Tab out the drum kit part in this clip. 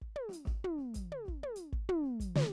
HH |--p---p---p---p-|
SD |--oo-oo-o-oo-ooo|
T1 |-o-----o-o-----o|
FT |----o-------o---|
BD |o--o--o-o--o--o-|